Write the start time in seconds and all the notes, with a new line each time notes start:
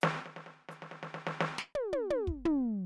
0.01 snare, hi-hat pedal
0.14 snare
0.26 snare
0.36 snare
0.46 snare
0.69 snare, hi-hat pedal
0.82 snare
0.91 snare
1.03 snare
1.14 snare
1.27 snare
1.40 snare
1.58 snare
1.75 high tom
1.92 closed hi-hat, high tom
2.10 high tom
2.27 kick
2.44 floor tom